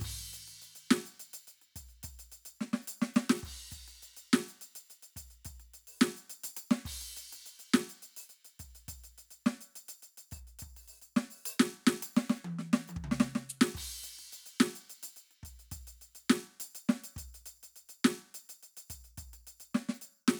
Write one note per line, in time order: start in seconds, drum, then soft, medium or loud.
0.01 kick medium
0.01 percussion medium
0.01 crash loud
0.08 kick soft
0.12 kick soft
0.34 percussion medium
0.48 percussion soft
0.62 percussion soft
0.76 percussion medium
0.91 snare loud
1.06 percussion medium
1.20 percussion medium
1.34 percussion medium
1.48 percussion soft
1.62 percussion soft
1.76 kick soft
1.76 percussion medium
1.89 percussion soft
2.04 kick soft
2.04 percussion medium
2.20 percussion medium
2.32 percussion medium
2.46 percussion medium
2.61 snare medium
2.74 snare medium
2.83 percussion soft
2.88 percussion loud
3.02 snare loud
3.14 snare loud
3.14 percussion soft
3.30 snare loud
3.38 percussion soft
3.43 kick soft
3.43 crash medium
3.49 kick soft
3.72 kick soft
3.72 percussion medium
3.88 percussion soft
3.96 percussion soft
4.03 percussion medium
4.17 percussion medium
4.34 snare loud
4.49 percussion soft
4.62 percussion medium
4.76 percussion medium
4.91 percussion soft
5.03 percussion medium
5.17 kick soft
5.17 percussion medium
5.31 percussion soft
5.45 kick soft
5.45 percussion medium
5.60 percussion soft
5.74 percussion medium
5.88 percussion medium
6.02 snare loud
6.15 percussion soft
6.17 percussion medium
6.30 percussion medium
6.44 percussion loud
6.57 percussion loud
6.71 snare loud
6.86 kick soft
6.86 crash loud
7.02 percussion medium
7.17 percussion medium
7.33 percussion medium
7.46 percussion medium
7.60 percussion medium
7.74 snare loud
7.90 percussion medium
8.03 percussion medium
8.17 percussion medium
8.30 percussion soft
8.45 percussion soft
8.60 kick soft
8.60 percussion medium
8.76 percussion soft
8.89 kick soft
8.89 percussion medium
9.04 percussion medium
9.18 percussion soft
9.31 percussion medium
9.47 snare loud
9.61 percussion medium
9.76 percussion medium
9.89 percussion medium
10.03 percussion medium
10.18 percussion medium
10.32 kick soft
10.32 percussion medium
10.37 percussion soft
10.48 percussion soft
10.59 kick soft
10.59 percussion medium
10.77 percussion medium
10.88 percussion medium
11.02 percussion medium
11.17 snare loud
11.31 percussion medium
11.46 percussion loud
11.51 percussion soft
11.60 snare loud
11.87 snare loud
12.03 percussion loud
12.17 snare loud
12.30 snare loud
12.36 percussion soft
12.45 high tom loud
12.59 snare medium
12.74 snare loud
12.88 high tom medium
12.88 percussion soft
12.97 kick medium
13.04 kick soft
13.04 mid tom medium
13.07 kick soft
13.12 snare medium
13.20 snare loud
13.36 snare medium
13.50 floor tom medium
13.62 snare loud
13.68 percussion soft
13.75 kick soft
13.75 crash loud
13.81 kick soft
14.04 percussion medium
14.19 percussion soft
14.33 percussion medium
14.46 percussion medium
14.61 snare loud
14.76 percussion medium
14.90 percussion medium
15.03 percussion medium
15.17 percussion medium
15.31 percussion soft
15.43 kick soft
15.43 percussion medium
15.60 percussion soft
15.72 kick soft
15.72 percussion medium
15.80 kick soft
15.88 percussion medium
16.02 percussion medium
16.15 percussion medium
16.30 snare loud
16.60 percussion loud
16.75 percussion medium
16.89 snare loud
17.04 percussion medium
17.17 kick soft
17.17 percussion medium
17.23 kick soft
17.35 percussion soft
17.46 percussion medium
17.63 percussion medium
17.76 percussion medium
17.89 percussion medium
18.05 snare loud
18.35 percussion medium
18.50 percussion medium
18.63 percussion medium
18.77 percussion medium
18.90 kick soft
18.90 percussion medium
19.05 percussion soft
19.18 kick soft
19.18 percussion medium
19.34 percussion medium
19.47 percussion medium
19.61 percussion medium
19.75 snare loud
19.89 snare medium
19.94 percussion soft
20.02 percussion medium
20.28 snare loud